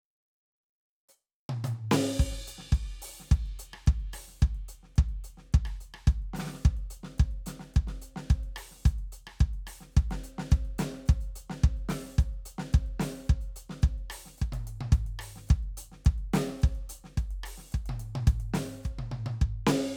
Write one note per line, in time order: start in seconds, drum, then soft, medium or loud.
1.09 hi-hat pedal soft
1.49 high tom loud
1.64 hi-hat pedal medium
1.64 high tom loud
1.91 snare loud
1.91 crash loud
2.19 kick loud
2.19 closed hi-hat medium
2.31 snare soft
2.47 closed hi-hat medium
2.58 snare soft
2.72 kick loud
2.72 closed hi-hat soft
2.87 closed hi-hat soft
3.02 open hi-hat loud
3.20 snare soft
3.27 hi-hat pedal soft
3.31 kick loud
3.31 closed hi-hat soft
3.38 snare soft
3.46 closed hi-hat soft
3.59 closed hi-hat medium
3.73 cross-stick medium
3.86 kick loud
3.86 closed hi-hat soft
4.00 closed hi-hat soft
4.13 open hi-hat medium
4.13 cross-stick medium
4.28 snare soft
4.38 kick loud
4.38 closed hi-hat soft
4.38 hi-hat pedal soft
4.55 closed hi-hat soft
4.68 closed hi-hat medium
4.83 snare soft
4.96 kick loud
4.96 closed hi-hat soft
5.09 closed hi-hat soft
5.24 closed hi-hat medium
5.37 snare soft
5.53 kick loud
5.53 closed hi-hat soft
5.65 cross-stick medium
5.65 closed hi-hat soft
5.80 closed hi-hat soft
5.94 cross-stick medium
6.07 kick loud
6.07 closed hi-hat soft
6.22 closed hi-hat soft
6.33 open hi-hat medium
6.33 snare medium
6.39 snare medium
6.42 snare soft
6.46 snare medium
6.53 snare soft
6.61 snare soft
6.61 closed hi-hat soft
6.61 hi-hat pedal soft
6.65 kick loud
6.70 snare soft
6.77 closed hi-hat soft
6.90 closed hi-hat medium
7.03 snare medium
7.18 kick loud
7.18 closed hi-hat soft
7.31 closed hi-hat soft
7.46 closed hi-hat medium
7.46 snare medium
7.59 snare soft
7.74 kick loud
7.74 closed hi-hat soft
7.87 snare soft
7.87 closed hi-hat soft
8.02 closed hi-hat medium
8.16 snare medium
8.30 kick loud
8.30 closed hi-hat soft
8.43 closed hi-hat soft
8.56 open hi-hat medium
8.56 cross-stick medium
8.71 snare soft
8.74 snare soft
8.82 closed hi-hat soft
8.82 kick loud
8.82 hi-hat pedal soft
8.98 closed hi-hat soft
9.07 kick soft
9.12 closed hi-hat medium
9.27 cross-stick medium
9.40 kick loud
9.40 closed hi-hat soft
9.53 closed hi-hat soft
9.67 open hi-hat medium
9.67 cross-stick medium
9.80 snare soft
9.92 hi-hat pedal soft
9.97 kick loud
9.97 closed hi-hat soft
10.11 snare medium
10.11 closed hi-hat soft
10.23 closed hi-hat medium
10.38 snare medium
10.51 kick loud
10.51 closed hi-hat soft
10.65 closed hi-hat soft
10.78 open hi-hat medium
10.78 snare loud
10.93 snare soft
11.06 kick loud
11.06 closed hi-hat soft
11.06 hi-hat pedal soft
11.11 snare soft
11.20 closed hi-hat soft
11.35 closed hi-hat medium
11.50 snare medium
11.63 kick loud
11.63 closed hi-hat soft
11.76 closed hi-hat soft
11.89 open hi-hat medium
11.89 snare medium
12.05 snare soft
12.14 hi-hat pedal soft
12.18 kick loud
12.18 snare soft
12.18 closed hi-hat soft
12.33 closed hi-hat soft
12.45 closed hi-hat medium
12.58 snare medium
12.73 kick loud
12.73 closed hi-hat soft
12.86 closed hi-hat soft
13.00 open hi-hat medium
13.00 snare loud
13.16 snare soft
13.24 hi-hat pedal soft
13.28 kick loud
13.28 snare soft
13.28 closed hi-hat soft
13.41 closed hi-hat soft
13.56 closed hi-hat medium
13.69 snare medium
13.82 kick loud
13.82 closed hi-hat soft
13.98 closed hi-hat soft
14.10 open hi-hat medium
14.10 cross-stick medium
14.26 snare soft
14.38 kick medium
14.38 hi-hat pedal soft
14.38 open hi-hat soft
14.52 closed hi-hat soft
14.52 high tom medium
14.67 closed hi-hat medium
14.81 high tom loud
14.92 kick loud
14.92 closed hi-hat soft
15.06 closed hi-hat soft
15.19 open hi-hat medium
15.19 cross-stick medium
15.36 snare soft
15.46 kick loud
15.46 closed hi-hat soft
15.46 hi-hat pedal soft
15.56 snare soft
15.63 closed hi-hat soft
15.77 closed hi-hat loud
15.92 snare soft
16.05 kick loud
16.05 closed hi-hat soft
16.18 closed hi-hat soft
16.33 open hi-hat medium
16.33 snare loud
16.48 snare soft
16.55 snare soft
16.59 snare soft
16.59 closed hi-hat soft
16.59 hi-hat pedal soft
16.63 kick loud
16.63 snare soft
16.75 closed hi-hat soft
16.89 closed hi-hat medium
17.04 snare soft
17.17 kick loud
17.17 closed hi-hat soft
17.31 closed hi-hat soft
17.43 open hi-hat medium
17.43 cross-stick medium
17.58 snare soft
17.70 kick medium
17.70 closed hi-hat soft
17.70 hi-hat pedal soft
17.86 closed hi-hat soft
17.86 high tom loud
17.99 closed hi-hat medium
18.15 high tom loud
18.27 kick loud
18.27 closed hi-hat medium
18.40 closed hi-hat soft
18.54 open hi-hat medium
18.54 snare loud
18.70 snare soft
18.83 kick medium
18.83 hi-hat pedal soft
18.98 high tom loud
19.11 high tom loud
19.26 high tom loud
19.41 kick loud
19.67 snare loud
19.67 crash medium